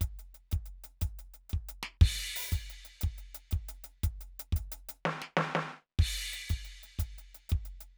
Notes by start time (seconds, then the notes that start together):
0.01 closed hi-hat, kick
0.19 open hi-hat
0.34 closed hi-hat
0.52 closed hi-hat, kick
0.66 closed hi-hat
0.84 open hi-hat
1.01 open hi-hat, kick
1.19 open hi-hat
1.34 closed hi-hat
1.50 open hi-hat, kick
1.69 closed hi-hat
1.83 snare
2.01 kick, crash
2.36 open hi-hat
2.52 open hi-hat, kick
2.70 open hi-hat
2.85 closed hi-hat
3.01 kick, closed hi-hat
3.18 closed hi-hat
3.35 closed hi-hat
3.51 closed hi-hat, kick
3.69 open hi-hat
3.84 open hi-hat
4.04 kick, closed hi-hat
4.21 open hi-hat
4.39 closed hi-hat
4.53 open hi-hat, kick
4.58 kick
4.72 open hi-hat
4.89 open hi-hat
5.05 snare
5.22 snare
5.37 snare
5.55 snare
5.99 kick, crash
6.33 closed hi-hat
6.50 closed hi-hat, kick
6.65 closed hi-hat
6.83 closed hi-hat
6.99 closed hi-hat, kick
7.18 closed hi-hat
7.35 closed hi-hat
7.49 closed hi-hat, kick
7.65 closed hi-hat
7.81 closed hi-hat